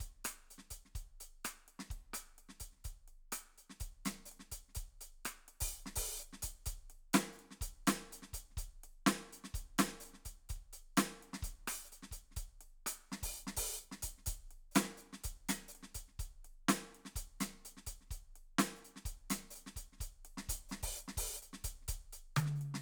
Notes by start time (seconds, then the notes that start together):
0.01 closed hi-hat, kick
0.25 closed hi-hat, cross-stick
0.51 closed hi-hat
0.59 snare
0.71 closed hi-hat, kick
0.86 snare
0.92 snare
0.94 closed hi-hat, kick, snare
1.21 closed hi-hat
1.45 closed hi-hat, cross-stick
1.69 closed hi-hat
1.80 snare
1.91 kick, closed hi-hat
2.14 closed hi-hat, cross-stick
2.39 closed hi-hat
2.50 snare
2.61 closed hi-hat, kick
2.73 snare
2.76 snare
2.79 snare
2.85 closed hi-hat, kick
3.09 closed hi-hat
3.33 closed hi-hat, cross-stick
3.59 closed hi-hat
3.70 snare
3.81 closed hi-hat, kick
4.06 closed hi-hat, snare
4.26 hi-hat pedal
4.32 closed hi-hat
4.40 snare
4.52 closed hi-hat, kick
4.69 snare
4.76 closed hi-hat, kick
5.02 closed hi-hat
5.26 closed hi-hat, cross-stick
5.49 closed hi-hat
5.61 open hi-hat, kick
5.80 hi-hat pedal
5.87 snare
5.97 open hi-hat, kick
6.20 hi-hat pedal
6.34 snare
6.43 closed hi-hat, kick
6.67 closed hi-hat, kick
6.73 kick
6.91 closed hi-hat
7.14 closed hi-hat, snare
7.33 hi-hat pedal
7.40 closed hi-hat
7.51 snare
7.62 closed hi-hat, kick
7.88 closed hi-hat, snare
8.13 closed hi-hat
8.23 snare
8.34 closed hi-hat, kick
8.51 snare
8.58 closed hi-hat, kick
8.64 kick
8.84 closed hi-hat
9.07 closed hi-hat, snare
9.33 closed hi-hat
9.45 snare
9.55 closed hi-hat, kick
9.79 closed hi-hat, snare
9.88 snare
10.01 hi-hat pedal
10.06 closed hi-hat
10.14 snare
10.22 closed hi-hat, snare
10.26 kick
10.50 closed hi-hat, kick
10.57 kick
10.74 closed hi-hat
10.98 closed hi-hat, snare
11.23 closed hi-hat
11.34 snare
11.43 closed hi-hat, kick
11.49 kick
11.68 open hi-hat, cross-stick
11.85 hi-hat pedal
11.93 closed hi-hat
12.03 snare
12.12 closed hi-hat, kick
12.32 snare
12.37 closed hi-hat, kick
12.62 closed hi-hat
12.87 closed hi-hat, cross-stick
13.13 snare
13.24 open hi-hat, kick
13.38 hi-hat pedal
13.48 snare
13.57 open hi-hat, kick
13.76 hi-hat pedal
13.81 closed hi-hat
13.92 snare
14.03 closed hi-hat, kick
14.19 snare
14.27 closed hi-hat, kick
14.34 kick
14.51 closed hi-hat
14.72 closed hi-hat, hi-hat pedal
14.77 snare
14.84 snare
14.98 hi-hat pedal
15.14 snare
15.25 closed hi-hat, kick
15.50 closed hi-hat, snare
15.69 hi-hat pedal
15.76 closed hi-hat
15.84 snare
15.95 closed hi-hat, kick
16.09 snare
16.20 closed hi-hat, kick
16.45 closed hi-hat
16.69 closed hi-hat, snare
16.95 closed hi-hat
17.06 snare
17.16 closed hi-hat, kick
17.41 closed hi-hat, snare
17.66 closed hi-hat
17.78 snare
17.87 closed hi-hat, kick
18.01 snare
18.07 kick, snare
18.12 closed hi-hat, snare
18.36 closed hi-hat
18.59 closed hi-hat, snare
18.76 hi-hat pedal
18.85 closed hi-hat
18.97 snare
19.06 closed hi-hat, kick
19.31 closed hi-hat, snare
19.51 hi-hat pedal
19.56 closed hi-hat
19.67 snare
19.77 closed hi-hat, kick
19.93 snare
19.98 snare
20.01 closed hi-hat, kick, snare
20.26 closed hi-hat
20.38 snare
20.50 open hi-hat, kick
20.55 kick
20.70 snare, hi-hat pedal
20.84 open hi-hat, kick
20.89 kick
20.98 hi-hat pedal
21.09 snare
21.18 open hi-hat, kick
21.24 kick
21.36 hi-hat pedal
21.43 closed hi-hat
21.54 snare
21.65 closed hi-hat, kick
21.83 snare
21.89 closed hi-hat, kick
21.95 kick
22.13 closed hi-hat
22.37 cross-stick, hi-hat pedal, high tom
22.47 snare
22.56 hi-hat pedal
22.62 closed hi-hat
22.75 snare